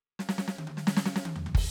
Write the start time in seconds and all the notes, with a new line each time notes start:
0.20 snare
0.29 snare
0.39 snare
0.48 snare
0.57 kick, high tom
0.68 high tom
0.77 snare
0.87 snare
0.97 snare
1.06 snare
1.16 snare
1.26 high tom
1.36 floor tom
1.47 floor tom
1.55 kick, crash